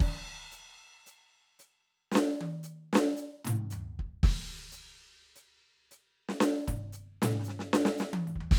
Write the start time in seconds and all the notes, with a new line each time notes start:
0.01 kick, crash
0.52 hi-hat pedal
1.07 hi-hat pedal
1.60 hi-hat pedal
2.12 snare, hi-hat pedal
2.16 snare
2.42 high tom
2.64 hi-hat pedal
2.94 snare
2.96 snare
3.17 hi-hat pedal
3.45 mid tom
3.48 mid tom
3.71 floor tom, hi-hat pedal
4.00 kick
4.24 kick, crash
4.29 floor tom, hi-hat pedal
4.73 hi-hat pedal
5.36 hi-hat pedal
5.92 hi-hat pedal
6.29 snare
6.41 snare, hi-hat pedal
6.68 kick, mid tom
6.93 hi-hat pedal
7.23 snare, mid tom
7.40 snare
7.45 hi-hat pedal
7.49 snare
7.60 snare
7.74 snare
7.86 snare
7.99 snare, hi-hat pedal
8.14 high tom
8.28 mid tom
8.36 kick
8.41 floor tom
8.52 kick, crash